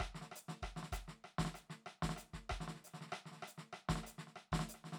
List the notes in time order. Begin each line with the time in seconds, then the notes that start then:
0.01 kick, cross-stick
0.15 snare
0.22 snare
0.32 cross-stick
0.37 hi-hat pedal
0.49 snare
0.63 kick, cross-stick
0.77 snare
0.84 snare
0.93 kick, cross-stick, hi-hat pedal
1.09 snare
1.25 cross-stick
1.39 kick, snare
1.46 snare
1.55 cross-stick, hi-hat pedal
1.71 snare
1.87 cross-stick
2.03 kick, snare
2.10 snare
2.17 cross-stick, hi-hat pedal
2.34 kick, snare
2.50 kick, cross-stick
2.61 snare
2.69 snare
2.76 snare
2.80 snare
2.85 cross-stick, hi-hat pedal
2.95 snare
3.02 snare
3.07 snare
3.13 cross-stick
3.27 snare
3.33 snare
3.37 snare
3.43 cross-stick
3.48 hi-hat pedal
3.59 snare
3.74 cross-stick
3.90 kick, snare
3.96 snare
4.04 cross-stick, hi-hat pedal
4.11 cross-stick
4.19 snare
4.28 snare
4.37 cross-stick
4.53 kick, snare
4.60 snare
4.68 snare, hi-hat pedal
4.75 cross-stick
4.80 snare
4.85 snare
4.93 snare